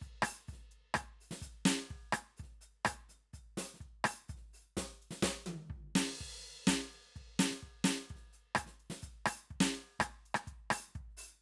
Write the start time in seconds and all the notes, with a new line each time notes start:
0.01 open hi-hat, kick
0.23 open hi-hat, cross-stick
0.47 open hi-hat, kick
0.53 snare
0.57 snare
0.61 snare
0.71 open hi-hat
0.94 open hi-hat, kick, cross-stick
1.20 open hi-hat
1.31 snare
1.42 closed hi-hat, kick
1.66 open hi-hat, snare
1.90 kick, closed hi-hat
2.13 open hi-hat, cross-stick
2.37 open hi-hat, kick
2.43 snare
2.48 snare
2.51 snare
2.61 closed hi-hat
2.85 open hi-hat, kick, cross-stick
2.99 snare
3.09 closed hi-hat, snare
3.14 snare
3.34 closed hi-hat, kick
3.58 open hi-hat, snare
3.74 snare
3.81 kick, closed hi-hat
4.05 open hi-hat, cross-stick
4.28 closed hi-hat, kick
4.37 snare
4.42 snare
4.46 snare
4.49 open hi-hat, snare
4.77 closed hi-hat, kick, snare
5.02 open hi-hat
5.11 snare
5.23 kick, snare
5.46 high tom
5.70 kick
5.96 snare, crash
6.21 kick
6.42 open hi-hat
6.67 open hi-hat, kick, snare
6.81 snare
6.93 snare, open hi-hat
6.98 snare
7.02 snare
7.16 kick, closed hi-hat
7.39 open hi-hat, snare
7.51 snare
7.62 kick, closed hi-hat
7.85 open hi-hat, snare
8.09 kick, closed hi-hat
8.16 snare
8.21 snare
8.28 snare
8.33 open hi-hat
8.55 open hi-hat, kick, cross-stick
8.67 snare
8.80 open hi-hat
8.90 snare
9.02 closed hi-hat, kick
9.26 open hi-hat, cross-stick
9.50 kick, closed hi-hat
9.61 snare
9.74 open hi-hat
10.00 closed hi-hat, kick, cross-stick
10.26 open hi-hat
10.35 cross-stick
10.48 kick, closed hi-hat
10.71 open hi-hat, cross-stick
10.89 snare
10.95 kick, closed hi-hat
11.10 snare
11.17 open hi-hat